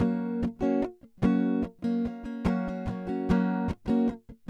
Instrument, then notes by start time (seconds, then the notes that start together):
acoustic guitar
0.01 F#3 A#3 C#4 F#4
0.44 F#3 A#3
0.61 C#4 F#4
0.65 F#3 A#3
1.24 F#3 A#3 C#4 F#4
1.64 F#3
1.84 F#3 A#3 C#4
2.06 F3 A#3 C#4 F#4
2.26 A#3 C#4
2.46 F#3 A#3 C#4 F#4
2.70 A#3
2.87 F#3 A#3 C#4
3.08 A#3 C#4 F#4
3.31 F#3 A#3 C#4 F#4
3.87 A#3 C#4 F#4